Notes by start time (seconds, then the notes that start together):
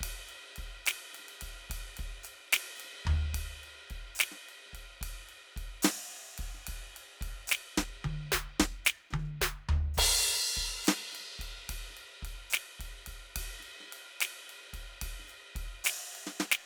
0.01 kick, ride
0.28 hi-hat pedal, ride
0.57 kick, ride
0.86 snare, hi-hat pedal, ride
1.14 snare, hi-hat pedal, ride
1.20 snare
1.25 snare
1.28 snare, ride
1.32 snare
1.42 kick, ride
1.70 kick, ride
1.97 kick, snare, ride
2.05 kick
2.24 hi-hat pedal, ride
2.53 snare, ride
2.77 snare, hi-hat pedal, ride
2.85 snare
2.94 snare
2.98 snare
3.05 kick, snare, floor tom
3.34 kick, ride
3.40 kick
3.64 ride
3.91 kick, ride
4.16 hi-hat pedal
4.20 snare, ride
4.32 snare
4.49 ride
4.67 snare
4.74 kick, ride
5.02 kick, ride
5.29 ride
5.57 kick, ride
5.83 snare, hi-hat pedal, ride
6.38 kick, ride
6.55 snare
6.61 snare
6.67 kick, ride
6.97 ride
7.22 kick, ride
7.28 kick
7.48 hi-hat pedal, ride
7.52 snare
7.78 kick, snare
8.05 kick, high tom
8.11 kick
8.32 kick, snare
8.40 kick
8.60 kick, snare
8.67 kick
8.86 snare, hi-hat pedal
9.11 kick, snare, high tom
9.19 kick, snare
9.26 snare
9.42 kick, snare
9.48 kick
9.69 kick, floor tom
9.77 kick
9.95 kick, hi-hat pedal, crash
10.05 kick
10.53 snare, ride
10.57 kick
10.85 snare, hi-hat pedal, ride
11.12 snare, hi-hat pedal, ride
11.21 snare
11.34 snare
11.38 kick, hi-hat pedal, ride
11.70 kick, ride
11.75 kick
11.91 snare
11.96 snare, ride
12.23 kick, ride
12.51 snare, hi-hat pedal, ride
12.80 kick, ride
13.07 kick, ride
13.36 kick, ride
13.60 snare, ride
13.81 snare
13.84 snare
13.88 snare
13.93 ride
14.21 snare, hi-hat pedal, ride
14.50 ride
14.74 kick, ride
15.02 kick, ride
15.20 snare
15.25 snare, hi-hat pedal
15.29 snare, ride
15.56 kick, ride
15.64 kick
15.85 snare, hi-hat pedal, ride
16.16 ride
16.27 snare
16.40 snare
16.52 snare